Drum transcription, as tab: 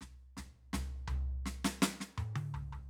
HH |-------------g--|
SD |g-o-o---oooo----|
T1 |-------------o--|
T2 |------------o---|
FT |g-o-o-o-------oo|